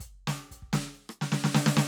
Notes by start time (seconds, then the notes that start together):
0.05 closed hi-hat, kick
0.27 closed hi-hat, snare
0.51 closed hi-hat, kick
0.62 kick
0.73 open hi-hat, snare
0.86 snare
0.94 hi-hat pedal
1.09 cross-stick
1.21 snare
1.32 snare
1.44 snare
1.54 snare
1.66 snare
1.77 snare